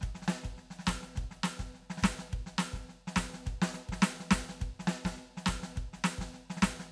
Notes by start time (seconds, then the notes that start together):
0.01 kick, snare
0.10 kick
0.15 snare
0.22 snare
0.28 snare, hi-hat pedal
0.43 kick, snare
0.58 snare
0.70 snare
0.79 snare
0.86 kick, snare, hi-hat pedal
1.03 snare
1.15 kick, snare
1.24 kick
1.31 snare
1.43 snare, hi-hat pedal
1.59 kick, snare
1.74 snare
1.82 snare
1.90 snare
1.97 snare
2.03 kick, snare, hi-hat pedal
2.19 snare
2.31 kick, snare
2.39 kick
2.46 snare
2.58 snare, hi-hat pedal
2.73 kick, snare
2.89 snare
3.07 snare
3.16 kick, snare, hi-hat pedal
3.34 snare
3.46 kick, snare
3.53 kick
3.55 kick
3.62 snare
3.73 snare, hi-hat pedal
3.89 kick, snare
4.02 snare
4.20 snare
4.31 kick, snare, hi-hat pedal
4.49 snare
4.60 kick, snare
4.68 kick
4.79 snare
4.87 snare, hi-hat pedal
5.05 kick, snare
5.17 snare
5.37 snare
5.46 kick, snare, hi-hat pedal
5.54 kick
5.63 snare
5.75 kick, snare
5.93 snare
6.04 snare, hi-hat pedal
6.18 kick, snare
6.34 snare
6.50 snare
6.57 snare
6.62 kick, snare, hi-hat pedal
6.68 kick
6.79 snare